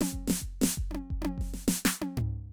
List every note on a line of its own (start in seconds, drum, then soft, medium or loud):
0.01 snare medium
0.01 high tom loud
0.13 kick soft
0.28 snare medium
0.30 snare loud
0.42 kick soft
0.61 snare loud
0.63 snare loud
0.77 kick medium
0.91 high tom medium
0.94 high tom loud
1.10 kick soft
1.22 high tom loud
1.25 high tom loud
1.38 kick soft
1.38 snare soft
1.54 snare soft
1.68 snare loud
1.85 snare loud
2.02 high tom loud
2.17 floor tom loud